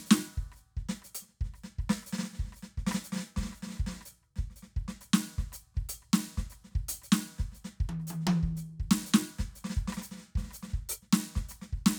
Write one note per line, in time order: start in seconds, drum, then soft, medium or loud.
0.01 snare soft
0.07 hi-hat pedal medium
0.12 snare loud
0.18 cross-stick soft
0.27 snare soft
0.38 kick soft
0.48 snare soft
0.52 cross-stick soft
0.52 snare soft
0.52 open hi-hat soft
0.57 hi-hat pedal soft
0.78 kick soft
0.78 snare soft
0.90 snare medium
1.02 cross-stick soft
1.02 snare soft
1.02 hi-hat pedal medium
1.16 closed hi-hat medium
1.23 snare soft
1.30 snare soft
1.42 kick soft
1.42 snare soft
1.53 cross-stick soft
1.53 snare soft
1.53 hi-hat pedal soft
1.65 snare soft
1.80 kick soft
1.80 cross-stick soft
1.91 snare medium
2.02 cross-stick soft
2.02 snare soft
2.07 hi-hat pedal medium
2.14 snare medium
2.20 snare medium
2.24 snare soft
2.29 snare soft
2.34 snare soft
2.38 kick soft
2.38 snare soft
2.41 snare soft
2.44 snare soft
2.47 snare soft
2.53 cross-stick soft
2.53 hi-hat pedal soft
2.53 open hi-hat soft
2.64 snare soft
2.78 kick soft
2.78 snare soft
2.88 snare medium
2.92 cross-stick medium
2.92 snare medium
2.99 snare soft
3.05 hi-hat pedal medium
3.13 snare medium
3.17 snare medium
3.20 snare soft
3.37 kick soft
3.37 snare soft
3.42 snare soft
3.46 snare soft
3.50 cross-stick soft
3.50 snare soft
3.56 hi-hat pedal soft
3.64 snare soft
3.68 snare soft
3.71 snare soft
3.74 snare soft
3.78 kick soft
3.78 cross-stick soft
3.88 snare soft
3.91 snare soft
3.94 snare soft
3.97 snare soft
4.02 cross-stick soft
4.06 hi-hat pedal medium
4.24 cross-stick soft
4.37 kick soft
4.37 snare soft
4.40 snare soft
4.51 snare soft
4.51 crash soft
4.57 hi-hat pedal soft
4.64 snare soft
4.77 kick soft
4.77 cross-stick soft
4.89 snare soft
4.97 snare soft
5.02 cross-stick soft
5.02 snare soft
5.02 hi-hat pedal soft
5.14 snare loud
5.28 snare soft
5.39 kick soft
5.39 snare soft
5.52 cross-stick soft
5.52 snare soft
5.52 hi-hat pedal medium
5.75 kick soft
5.75 cross-stick soft
5.75 snare soft
5.90 closed hi-hat medium
6.03 cross-stick soft
6.14 snare loud
6.20 cross-stick soft
6.38 kick soft
6.38 snare soft
6.51 cross-stick soft
6.51 snare soft
6.51 hi-hat pedal soft
6.65 snare soft
6.72 kick soft
6.72 snare soft
6.77 snare soft
6.90 closed hi-hat loud
7.03 cross-stick soft
7.03 hi-hat pedal medium
7.13 snare loud
7.29 cross-stick soft
7.39 kick soft
7.39 snare soft
7.53 snare soft
7.53 hi-hat pedal soft
7.66 snare soft
7.78 kick soft
7.78 snare soft
7.90 high tom medium
8.01 cross-stick soft
8.08 hi-hat pedal medium
8.08 high tom medium
8.13 closed hi-hat soft
8.22 snare soft
8.28 high tom loud
8.44 kick soft
8.57 snare soft
8.57 hi-hat pedal medium
8.81 kick soft
8.92 snare loud
9.04 snare soft
9.04 hi-hat pedal medium
9.15 snare loud
9.28 snare soft
9.40 kick soft
9.40 snare soft
9.52 snare soft
9.54 snare soft
9.54 hi-hat pedal medium
9.54 open hi-hat soft
9.65 snare soft
9.71 snare medium
9.78 kick soft
9.78 cross-stick soft
9.89 snare medium
9.93 cross-stick medium
9.98 snare soft
10.03 cross-stick soft
10.03 hi-hat pedal medium
10.12 snare soft
10.16 snare soft
10.19 snare soft
10.21 snare soft
10.27 snare soft
10.36 kick soft
10.36 snare soft
10.43 snare soft
10.48 snare soft
10.52 cross-stick soft
10.52 hi-hat pedal medium
10.52 open hi-hat soft
10.64 snare soft
10.69 snare soft
10.74 kick soft
10.74 snare soft
10.90 open hi-hat loud
10.90 hi-hat pedal medium
11.03 snare soft
11.14 snare loud
11.36 kick soft
11.36 snare soft
11.44 snare soft
11.50 cross-stick soft
11.50 snare soft
11.50 hi-hat pedal medium
11.63 snare soft
11.74 kick soft
11.74 snare soft
11.87 snare loud
11.92 cross-stick soft